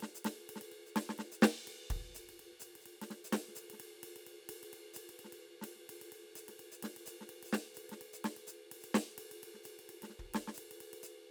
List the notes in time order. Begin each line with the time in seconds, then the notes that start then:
0.01 snare, ride
0.15 hi-hat pedal
0.25 snare, ride
0.50 ride
0.56 snare
0.62 ride
0.72 ride
0.87 hi-hat pedal
0.96 snare, ride
1.10 snare
1.18 snare, ride
1.32 hi-hat pedal
1.42 snare, ride
1.68 ride
1.91 kick, ride
2.09 snare
2.15 hi-hat pedal, ride
2.29 ride
2.40 ride
2.51 snare
2.60 hi-hat pedal, ride
2.76 ride
2.81 hi-hat pedal
2.86 ride
3.02 snare, ride
3.11 snare, ride
3.25 hi-hat pedal
3.33 snare, ride
3.49 snare
3.56 hi-hat pedal, ride
3.71 snare, ride
3.80 ride
4.04 ride
4.17 ride
4.27 ride
4.50 ride
4.64 ride
4.94 hi-hat pedal, ride
5.10 ride
5.25 snare
5.33 ride
5.62 snare, ride
5.76 snare
5.90 ride
6.02 ride
6.13 ride
6.24 snare
6.36 hi-hat pedal, ride
6.49 snare, ride
6.60 ride
6.72 hi-hat pedal
6.83 snare, ride
6.97 ride
7.06 hi-hat pedal, ride
7.21 snare
7.30 ride
7.43 hi-hat pedal, ride
7.53 snare, ride
7.75 hi-hat pedal, ride
7.90 snare, ride
8.02 ride
8.14 hi-hat pedal
8.25 snare, ride
8.37 ride
8.47 hi-hat pedal, ride
8.72 ride
8.81 hi-hat pedal, ride
8.95 snare, ride
9.18 ride
9.32 ride
9.44 ride
9.55 snare
9.64 hi-hat pedal, ride
9.80 ride
10.03 snare, ride
10.10 snare
10.20 kick
10.34 snare, ride
10.48 snare
10.55 hi-hat pedal, ride
10.72 ride
10.81 ride
10.94 ride
11.04 hi-hat pedal